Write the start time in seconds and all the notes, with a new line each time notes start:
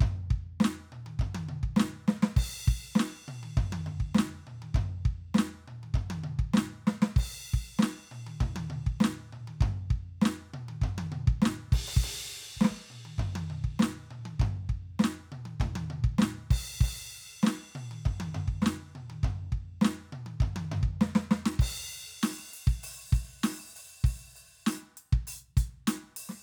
0.01 kick, floor tom
0.31 kick
0.61 snare
0.65 snare
0.93 mid tom
1.07 high tom
1.20 kick, floor tom
1.35 high tom
1.49 mid tom
1.63 kick
1.77 snare
1.80 snare
2.08 snare
2.23 snare
2.37 kick, crash
2.68 kick
2.79 kick
2.96 snare
3.00 snare
3.28 mid tom
3.43 high tom
3.57 kick, floor tom
3.73 high tom
3.87 floor tom
4.00 kick
4.15 snare
4.19 snare
4.47 mid tom
4.62 high tom
4.75 kick, floor tom
5.06 kick
5.35 snare
5.39 snare
5.68 mid tom
5.83 high tom
5.94 kick, floor tom
6.11 high tom
6.24 mid tom
6.39 kick
6.54 snare
6.58 snare
6.87 snare
7.02 snare
7.17 kick, crash
7.54 kick
7.79 snare
7.83 snare
8.12 mid tom
8.27 high tom
8.41 kick, floor tom
8.56 high tom
8.70 mid tom
8.87 kick
9.01 snare
9.04 snare
9.33 mid tom
9.48 high tom
9.61 kick, floor tom
9.91 kick
10.22 snare
10.26 snare
10.54 mid tom
10.69 high tom
10.82 kick, floor tom
10.98 high tom
11.12 mid tom
11.28 kick
11.42 snare
11.46 snare
11.73 kick, ride
11.88 crash
11.97 kick
12.04 ride
12.57 kick
12.61 snare
12.65 snare
12.71 kick
12.91 mid tom
13.06 high tom
13.19 kick, floor tom
13.36 high tom
13.50 mid tom
13.64 kick
13.80 snare
13.83 snare
14.11 mid tom
14.26 high tom
14.40 kick, floor tom
14.70 kick
15.00 snare
15.04 snare
15.32 mid tom
15.46 high tom
15.60 kick, floor tom
15.76 high tom
15.91 mid tom
16.04 kick
16.19 snare
16.22 snare
16.51 kick, crash
16.81 open hi-hat, kick, crash
17.42 snare, hi-hat pedal
17.47 snare
17.76 mid tom
17.91 high tom
18.06 kick, floor tom
18.20 high tom
18.35 floor tom
18.48 kick
18.62 snare
18.66 snare
18.96 mid tom
19.10 high tom
19.24 kick, floor tom
19.53 kick
19.82 snare
19.85 snare
20.13 mid tom
20.27 high tom
20.41 kick, floor tom
20.56 high tom
20.72 floor tom
20.83 kick
21.01 snare
21.16 snare
21.31 snare
21.46 snare
21.59 kick, crash
21.92 open hi-hat
22.23 open hi-hat, snare
22.54 open hi-hat
22.68 kick
22.84 open hi-hat
23.13 open hi-hat, kick
23.44 open hi-hat, snare
23.76 open hi-hat
24.04 open hi-hat, kick
24.35 open hi-hat
24.67 open hi-hat, snare
24.98 closed hi-hat
25.13 kick
25.28 open hi-hat
25.57 open hi-hat, kick
25.88 closed hi-hat, snare
26.17 open hi-hat
26.29 snare